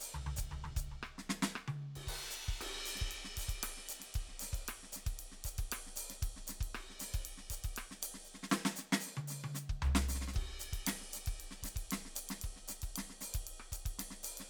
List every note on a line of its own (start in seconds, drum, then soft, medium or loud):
0.01 hi-hat pedal medium
0.01 ride soft
0.14 floor tom medium
0.14 high tom medium
0.27 floor tom medium
0.27 high tom medium
0.37 kick soft
0.37 hi-hat pedal loud
0.51 floor tom medium
0.51 high tom medium
0.64 floor tom medium
0.64 high tom medium
0.77 kick medium
0.77 hi-hat pedal medium
0.92 floor tom soft
1.03 cross-stick medium
1.18 snare soft
1.30 snare medium
1.43 snare loud
1.56 cross-stick medium
1.68 high tom medium
1.96 kick soft
1.96 ride medium
2.07 kick soft
2.07 crash medium
2.31 hi-hat pedal medium
2.48 kick medium
2.61 cross-stick medium
2.61 ride loud
2.75 snare soft
2.86 hi-hat pedal medium
2.86 ride medium
2.96 snare soft
2.96 ride medium
3.02 kick soft
3.11 ride medium
3.25 snare soft
3.37 kick soft
3.37 hi-hat pedal medium
3.37 ride medium
3.49 kick soft
3.49 ride medium
3.63 cross-stick medium
3.63 ride loud
3.77 snare soft
3.89 hi-hat pedal medium
3.89 ride medium
4.00 snare soft
4.00 ride medium
4.15 kick medium
4.15 ride medium
4.29 snare soft
4.40 snare soft
4.40 hi-hat pedal medium
4.40 ride medium
4.53 kick soft
4.53 ride medium
4.68 cross-stick medium
4.68 ride medium
4.83 snare soft
4.93 snare soft
4.93 hi-hat pedal medium
4.93 ride medium
5.07 kick medium
5.07 ride medium
5.19 ride medium
5.32 snare soft
5.44 kick soft
5.44 hi-hat pedal medium
5.44 ride medium
5.59 kick soft
5.59 ride medium
5.72 cross-stick medium
5.72 ride loud
5.87 snare soft
5.96 hi-hat pedal medium
5.96 ride medium
6.10 snare soft
6.10 ride medium
6.23 kick medium
6.23 ride medium
6.37 snare soft
6.47 snare soft
6.47 hi-hat pedal medium
6.47 ride medium
6.61 kick soft
6.61 ride medium
6.75 cross-stick medium
6.75 ride medium
6.90 snare soft
7.00 snare soft
7.00 hi-hat pedal medium
7.00 ride medium
7.14 kick medium
7.14 ride medium
7.25 ride medium
7.38 snare soft
7.50 kick soft
7.50 hi-hat pedal medium
7.50 ride medium
7.64 kick soft
7.64 ride medium
7.77 cross-stick medium
7.77 ride medium
7.91 snare soft
8.03 hi-hat pedal medium
8.03 ride loud
8.14 snare soft
8.25 hi-hat pedal soft
8.34 snare soft
8.43 snare soft
8.50 snare medium
8.50 hi-hat pedal soft
8.65 snare loud
8.76 snare soft
8.76 hi-hat pedal medium
8.93 snare loud
9.01 hi-hat pedal medium
9.07 snare soft
9.17 high tom medium
9.28 snare soft
9.28 hi-hat pedal medium
9.44 high tom medium
9.55 snare soft
9.55 hi-hat pedal medium
9.70 kick soft
9.82 floor tom loud
9.82 hi-hat pedal soft
9.95 snare loud
10.09 snare soft
10.09 hi-hat pedal medium
10.15 snare soft
10.22 snare soft
10.28 snare soft
10.32 snare soft
10.32 ride medium
10.36 kick medium
10.49 snare soft
10.60 hi-hat pedal medium
10.60 ride medium
10.73 kick soft
10.73 ride medium
10.87 snare medium
10.87 ride loud
11.01 snare soft
11.13 snare soft
11.13 hi-hat pedal medium
11.13 ride medium
11.26 kick medium
11.26 ride medium
11.40 ride medium
11.51 snare soft
11.63 kick soft
11.63 snare soft
11.63 hi-hat pedal medium
11.63 ride medium
11.76 kick soft
11.76 ride medium
11.91 snare medium
11.91 ride medium
12.05 snare soft
12.16 hi-hat pedal medium
12.16 ride medium
12.29 snare medium
12.29 ride medium
12.42 kick soft
12.42 ride medium
12.56 snare soft
12.68 snare soft
12.68 hi-hat pedal medium
12.68 ride medium
12.82 kick soft
12.82 ride medium
12.96 snare medium
12.96 ride loud
13.10 snare soft
13.21 snare soft
13.21 hi-hat pedal medium
13.34 kick soft
13.34 ride medium
13.47 ride medium
13.60 cross-stick medium
13.72 kick soft
13.72 hi-hat pedal medium
13.72 ride medium
13.86 kick soft
13.86 ride medium
13.99 snare soft
13.99 ride loud
14.11 snare soft
14.23 hi-hat pedal medium
14.23 ride medium
14.38 snare soft
14.38 ride medium